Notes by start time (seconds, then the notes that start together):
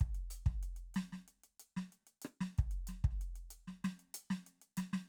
0.01 kick, closed hi-hat
0.16 closed hi-hat
0.31 closed hi-hat
0.47 kick, snare
0.64 closed hi-hat
0.77 closed hi-hat
0.95 snare, closed hi-hat
1.13 snare
1.29 closed hi-hat
1.45 closed hi-hat
1.61 closed hi-hat
1.77 snare
1.93 closed hi-hat
2.08 closed hi-hat
2.23 cross-stick, closed hi-hat
2.41 snare
2.59 kick, closed hi-hat
2.72 closed hi-hat
2.88 snare, closed hi-hat
3.05 kick
3.11 snare
3.22 closed hi-hat
3.37 closed hi-hat
3.51 closed hi-hat
3.68 snare
3.85 snare, closed hi-hat
4.00 closed hi-hat
4.15 closed hi-hat
4.31 snare
4.47 closed hi-hat
4.63 closed hi-hat
4.78 snare, closed hi-hat
4.94 snare